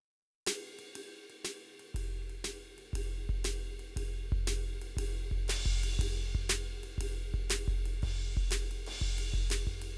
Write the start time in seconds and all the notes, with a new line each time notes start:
0.47 snare, ride
0.79 ride
0.95 ride
1.30 ride
1.45 snare, ride
1.79 ride
1.94 kick, ride
2.30 ride
2.44 snare, ride
2.78 ride
2.93 kick, ride
3.29 kick
3.44 snare, ride
3.79 ride
3.96 kick, ride
4.32 kick
4.47 snare, ride
4.82 ride
4.97 kick, ride
5.31 kick
5.48 snare, ride
5.66 kick
5.83 ride
5.99 kick, ride
6.35 kick
6.49 snare, ride
6.83 ride
6.98 kick, ride
7.34 kick
7.50 snare, ride
7.68 kick
7.86 ride
8.02 kick, ride
8.37 kick
8.51 snare, ride
8.71 ride
8.87 ride
9.01 kick
9.18 ride
9.34 kick
9.50 snare, ride
9.67 kick
9.82 ride